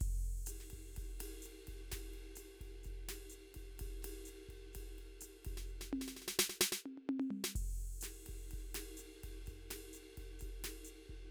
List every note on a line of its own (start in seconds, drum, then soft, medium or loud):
0.01 kick soft
0.01 crash medium
0.08 kick soft
0.47 hi-hat pedal loud
0.47 ride medium
0.60 snare soft
0.70 kick soft
0.70 ride soft
0.93 hi-hat pedal soft
0.93 ride soft
0.98 kick soft
1.03 kick soft
1.20 snare soft
1.20 ride medium
1.42 hi-hat pedal medium
1.42 ride soft
1.67 kick soft
1.67 ride soft
1.91 kick soft
1.91 snare soft
1.91 ride medium
1.98 kick soft
2.14 ride soft
2.36 snare soft
2.36 hi-hat pedal medium
2.36 ride medium
2.61 kick soft
2.61 ride soft
2.84 kick soft
2.84 hi-hat pedal soft
2.84 ride soft
3.09 snare soft
3.09 ride medium
3.30 hi-hat pedal medium
3.30 ride soft
3.55 kick soft
3.55 ride soft
3.78 kick soft
3.78 hi-hat pedal soft
3.78 ride medium
3.87 kick soft
4.03 snare soft
4.03 ride medium
4.26 hi-hat pedal medium
4.26 ride soft
4.49 kick soft
4.49 ride soft
4.73 kick soft
4.73 snare soft
4.73 hi-hat pedal soft
4.73 ride medium
4.99 ride soft
5.21 hi-hat pedal medium
5.21 ride soft
5.45 kick soft
5.45 ride soft
5.52 kick soft
5.57 snare soft
5.67 hi-hat pedal soft
5.81 snare soft
5.93 high tom loud
6.01 snare soft
6.06 snare soft
6.06 hi-hat pedal soft
6.17 snare soft
6.22 snare soft
6.28 snare medium
6.39 snare loud
6.50 snare medium
6.61 snare loud
6.72 snare medium
6.86 high tom medium
6.98 high tom soft
7.09 high tom loud
7.20 open hi-hat soft
7.20 high tom loud
7.31 mid tom medium
7.44 snare medium
7.56 kick soft
7.56 crash medium
7.62 kick soft
8.01 snare soft
8.01 hi-hat pedal loud
8.01 ride medium
8.26 kick soft
8.26 ride soft
8.49 hi-hat pedal soft
8.49 ride soft
8.54 kick soft
8.54 snare soft
8.58 snare soft
8.60 snare soft
8.75 snare soft
8.75 ride medium
8.97 hi-hat pedal medium
8.97 ride soft
9.24 kick soft
9.24 ride soft
9.29 kick soft
9.46 kick soft
9.46 hi-hat pedal soft
9.46 ride soft
9.53 kick soft
9.71 snare soft
9.71 ride medium
9.93 hi-hat pedal medium
9.93 ride soft
10.18 kick soft
10.18 ride soft
10.39 kick soft
10.39 hi-hat pedal soft
10.39 ride soft
10.64 snare soft
10.64 ride medium
10.85 hi-hat pedal medium
11.10 kick soft